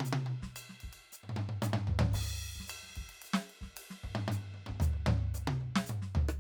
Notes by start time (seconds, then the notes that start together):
0.01 high tom
0.06 hi-hat pedal
0.13 high tom
0.27 high tom
0.43 kick, snare
0.56 hi-hat pedal, ride bell
0.70 snare
0.81 kick, ride bell
0.94 ride bell
1.13 hi-hat pedal
1.24 mid tom
1.30 mid tom
1.37 mid tom
1.50 mid tom
1.63 hi-hat pedal, mid tom
1.74 mid tom
1.88 floor tom
2.00 floor tom
2.12 kick, hi-hat pedal, crash
2.23 cross-stick
2.56 kick
2.61 snare
2.68 hi-hat pedal, ride bell
2.84 snare
2.90 snare
2.96 kick, ride
3.03 snare
3.10 ride
3.23 hi-hat pedal, ride
3.34 snare
3.50 ride
3.62 kick, snare
3.77 hi-hat pedal, ride
3.91 snare
4.04 kick, mid tom
4.16 mid tom
4.29 hi-hat pedal, mid tom
4.55 mid tom
4.67 kick, mid tom
4.81 floor tom, hi-hat pedal
4.94 mid tom
5.07 floor tom
5.19 mid tom
5.35 hi-hat pedal, mid tom
5.48 high tom
5.61 mid tom
5.76 snare
5.87 hi-hat pedal, mid tom
6.03 snare
6.16 floor tom
6.29 cross-stick